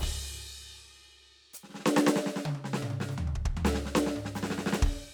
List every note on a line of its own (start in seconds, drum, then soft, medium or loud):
0.01 kick medium
0.01 crash loud
1.54 hi-hat pedal loud
1.64 snare soft
1.70 snare soft
1.75 snare medium
1.80 snare soft
1.87 snare loud
1.97 snare loud
2.17 snare loud
2.27 snare medium
2.37 snare medium
2.46 high tom loud
2.56 high tom medium
2.65 snare medium
2.74 snare loud
2.83 mid tom loud
2.91 high tom medium
3.01 snare medium
3.10 hi-hat pedal soft
3.10 high tom loud
3.19 floor tom loud
3.28 high tom medium
3.36 kick medium
3.58 floor tom loud
3.66 snare loud
3.75 snare medium
3.86 snare medium
3.96 snare loud
3.96 hi-hat pedal soft
4.07 snare medium
4.17 mid tom loud
4.26 snare medium
4.36 snare medium
4.36 hi-hat pedal medium
4.44 snare medium
4.51 snare medium
4.59 snare medium
4.67 snare loud
4.73 snare loud
4.83 kick loud
4.83 crash medium